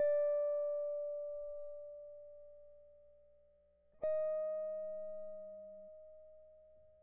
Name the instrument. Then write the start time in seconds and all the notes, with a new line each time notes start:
electric guitar
0.00 D5
4.03 D#5